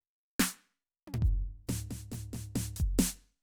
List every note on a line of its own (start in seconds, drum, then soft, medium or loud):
0.39 open hi-hat loud
0.39 snare loud
1.07 high tom medium
1.14 floor tom medium
1.22 kick medium
1.22 hi-hat pedal soft
1.67 snare medium
1.67 floor tom medium
1.67 hi-hat pedal soft
1.90 snare soft
1.90 floor tom medium
2.12 snare soft
2.12 floor tom medium
2.12 hi-hat pedal medium
2.33 snare soft
2.33 floor tom medium
2.55 snare medium
2.55 floor tom medium
2.76 closed hi-hat medium
2.76 kick medium
2.98 snare loud
2.98 hi-hat pedal medium